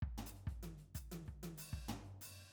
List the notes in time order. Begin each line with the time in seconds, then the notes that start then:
0.02 kick
0.18 floor tom
0.26 hi-hat pedal
0.34 snare
0.47 kick, snare
0.63 high tom
0.77 snare
0.94 kick, snare, hi-hat pedal
1.12 high tom
1.25 kick, snare
1.43 high tom
1.56 snare, hi-hat pedal
1.73 kick
1.88 floor tom
2.04 snare
2.21 hi-hat pedal